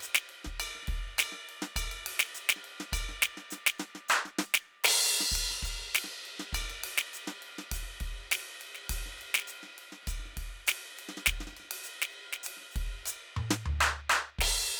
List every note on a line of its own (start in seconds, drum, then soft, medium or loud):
0.01 hi-hat pedal medium
0.01 ride bell medium
0.15 snare loud
0.30 ride soft
0.45 kick soft
0.45 snare soft
0.60 hi-hat pedal medium
0.60 ride bell loud
0.75 snare soft
0.83 snare soft
0.88 kick medium
0.88 ride medium
0.95 kick soft
1.18 snare loud
1.18 hi-hat pedal medium
1.18 ride bell loud
1.33 snare soft
1.49 ride soft
1.62 snare medium
1.76 kick soft
1.76 hi-hat pedal medium
1.76 ride bell loud
1.85 kick soft
1.92 ride bell medium
2.07 ride loud
2.20 snare loud
2.26 snare soft
2.35 hi-hat pedal medium
2.35 ride soft
2.50 snare loud
2.57 snare soft
2.65 ride soft
2.80 snare medium
2.93 kick medium
2.93 hi-hat pedal medium
2.93 ride bell loud
2.99 kick soft
3.02 kick soft
3.09 snare soft
3.23 snare loud
3.38 snare soft
3.51 snare soft
3.51 hi-hat pedal medium
3.67 snare loud
3.79 snare medium
3.79 hi-hat pedal soft
3.95 snare soft
4.09 percussion loud
4.09 hi-hat pedal medium
4.26 snare soft
4.39 snare medium
4.43 hi-hat pedal soft
4.54 snare loud
4.84 snare loud
4.84 crash loud
4.91 snare soft
5.21 snare soft
5.32 kick soft
5.32 hi-hat pedal medium
5.36 kick soft
5.36 ride loud
5.51 snare soft
5.54 snare soft
5.63 kick soft
5.63 hi-hat pedal medium
5.63 ride soft
5.69 kick soft
5.95 snare loud
5.95 hi-hat pedal medium
5.95 ride loud
6.05 snare soft
6.25 hi-hat pedal soft
6.25 ride soft
6.40 snare medium
6.53 kick soft
6.53 snare soft
6.53 hi-hat pedal medium
6.53 ride bell loud
6.61 kick soft
6.61 snare soft
6.65 snare soft
6.68 snare soft
6.68 ride bell medium
6.71 snare soft
6.84 ride loud
6.98 snare loud
7.14 hi-hat pedal medium
7.14 ride soft
7.28 snare medium
7.43 ride medium
7.59 snare soft
7.72 kick soft
7.72 hi-hat pedal medium
7.72 ride loud
7.80 kick soft
7.80 snare soft
8.01 kick soft
8.01 ride medium
8.32 snare loud
8.32 hi-hat pedal medium
8.32 ride loud
8.40 snare soft
8.60 hi-hat pedal soft
8.60 ride medium
8.75 snare soft
8.90 kick soft
8.90 hi-hat pedal medium
8.90 ride loud
8.99 kick soft
9.06 snare soft
9.18 hi-hat pedal soft
9.18 ride soft
9.35 snare loud
9.39 snare medium
9.48 hi-hat pedal medium
9.48 ride medium
9.63 snare soft
9.70 snare soft
9.79 ride medium
9.93 snare soft
10.03 snare soft
10.08 kick soft
10.08 hi-hat pedal medium
10.08 ride bell medium
10.17 kick soft
10.17 snare soft
10.26 snare soft
10.30 snare soft
10.34 kick soft
10.34 snare soft
10.34 hi-hat pedal soft
10.34 ride medium
10.67 snare loud
10.67 hi-hat pedal medium
10.67 ride loud
10.97 hi-hat pedal soft
10.97 ride medium
11.09 snare soft
11.18 snare soft
11.27 kick soft
11.27 snare loud
11.27 hi-hat pedal medium
11.41 snare soft
11.48 snare soft
11.53 snare soft
11.57 snare soft
11.57 ride bell soft
11.65 snare soft
11.71 ride loud
11.84 hi-hat pedal medium
12.02 snare medium
12.11 hi-hat pedal soft
12.33 snare medium
12.44 hi-hat pedal medium
12.44 ride loud
12.57 snare soft
12.62 snare soft
12.72 hi-hat pedal soft
12.76 kick medium
12.76 ride medium
12.83 kick soft
12.87 kick soft
13.06 hi-hat pedal loud
13.06 ride bell medium
13.37 mid tom loud
13.51 snare loud
13.66 floor tom loud
13.81 percussion loud
14.10 percussion loud
14.39 kick medium
14.39 snare medium
14.39 crash medium
14.46 kick soft
14.46 snare soft
14.50 kick soft